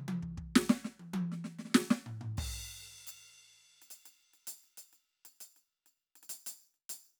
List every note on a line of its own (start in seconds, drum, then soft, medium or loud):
0.09 high tom loud
0.23 kick soft
0.38 kick soft
0.56 snare loud
0.70 snare loud
0.85 snare medium
1.00 high tom medium
1.14 high tom loud
1.32 snare soft
1.45 snare medium
1.59 snare soft
1.65 snare soft
1.71 snare soft
1.75 snare loud
1.91 snare loud
2.07 floor tom medium
2.22 floor tom medium
2.38 kick medium
2.38 crash medium
3.08 percussion medium
3.57 percussion soft
3.77 percussion soft
3.82 percussion soft
3.91 percussion medium
4.06 percussion medium
4.20 percussion soft
4.34 percussion soft
4.48 percussion loud
4.64 percussion soft
4.78 percussion medium
4.94 percussion soft
5.10 percussion soft
5.26 percussion medium
5.41 percussion medium
5.57 percussion soft
5.87 percussion soft
6.16 percussion soft
6.24 percussion soft
6.30 percussion loud
6.47 percussion loud
6.62 percussion soft
6.75 percussion soft
6.90 percussion loud
7.06 percussion soft